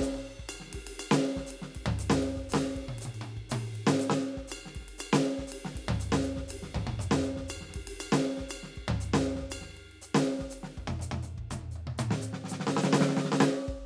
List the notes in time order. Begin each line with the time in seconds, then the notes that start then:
0.01 kick, hi-hat pedal, crash
0.07 kick, cross-stick
0.15 high tom
0.40 kick
0.49 hi-hat pedal, ride bell
0.61 snare
0.67 snare
0.71 snare, ride
0.74 kick, snare
0.77 snare
0.79 kick, snare
0.88 ride
1.00 hi-hat pedal, ride bell
1.12 snare
1.26 ride
1.37 kick, snare
1.47 hi-hat pedal, ride
1.62 snare
1.76 kick, ride
1.87 floor tom
2.00 hi-hat pedal, ride
2.11 snare
2.22 hi-hat pedal, ride
2.38 kick
2.50 hi-hat pedal, ride
2.54 snare
2.76 kick, ride
2.89 high tom
2.99 hi-hat pedal, ride
3.06 high tom
3.15 ride bell
3.22 hi-hat pedal, high tom
3.37 kick
3.50 hi-hat pedal, high tom, ride
3.73 hi-hat pedal, ride
3.88 snare
4.00 hi-hat pedal, ride
4.11 snare
4.21 hi-hat pedal, ride
4.37 kick, snare
4.48 hi-hat pedal
4.53 ride bell
4.66 snare, hi-hat pedal
4.76 kick, ride
4.81 snare
4.88 snare, ride
4.99 hi-hat pedal, ride bell
5.14 snare
5.21 hi-hat pedal
5.26 ride
5.39 kick, snare
5.48 hi-hat pedal
5.53 ride
5.66 snare
5.76 kick, ride
5.82 kick
5.89 floor tom
6.01 hi-hat pedal, ride
6.13 snare
6.23 hi-hat pedal, ride
6.37 kick, snare
6.49 hi-hat pedal, ride
6.63 snare
6.75 kick, floor tom
6.82 kick
6.88 high tom
7.00 hi-hat pedal, mid tom
7.12 snare
7.23 hi-hat pedal, mid tom
7.37 kick, snare
7.49 hi-hat pedal, ride bell
7.61 snare
7.70 snare, hi-hat pedal
7.75 kick, snare, ride
7.81 kick, snare
7.87 snare, ride
8.00 hi-hat pedal, ride bell
8.13 snare
8.22 hi-hat pedal, ride
8.38 kick, snare
8.49 hi-hat pedal, ride bell
8.64 snare
8.77 kick, ride
8.89 floor tom
9.01 hi-hat pedal, ride
9.14 snare
9.23 hi-hat pedal
9.36 snare
9.42 kick
9.51 hi-hat pedal, ride bell
9.62 snare
9.69 snare
9.73 snare, hi-hat pedal
9.78 snare, ride
9.84 snare
9.87 snare
9.92 ride
10.02 hi-hat pedal, ride
10.15 snare
10.21 cross-stick, hi-hat pedal
10.27 ride
10.40 kick, snare
10.51 hi-hat pedal, ride
10.64 snare
10.73 hi-hat pedal
10.78 kick, mid tom
10.88 mid tom
11.00 hi-hat pedal, mid tom
11.12 mid tom
11.23 hi-hat pedal, mid tom
11.38 kick, high tom
11.44 kick
11.51 hi-hat pedal, mid tom
11.62 high tom
11.72 hi-hat pedal
11.76 high tom
11.88 high tom
11.99 hi-hat pedal, high tom
12.11 snare
12.22 hi-hat pedal
12.34 snare
12.45 snare
12.49 snare, hi-hat pedal
12.61 snare
12.68 snare
12.78 snare
12.83 snare, hi-hat pedal
12.94 snare
13.02 snare
13.10 snare
13.17 snare
13.25 snare
13.33 snare
13.41 snare
13.52 snare
13.69 kick